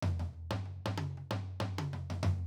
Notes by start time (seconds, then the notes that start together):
0.01 floor tom
0.19 floor tom
0.33 high tom
0.51 mid tom
0.65 high tom
0.86 mid tom
0.98 high tom
1.17 high tom
1.31 mid tom
1.60 mid tom
1.78 high tom
1.93 floor tom
2.10 floor tom
2.23 floor tom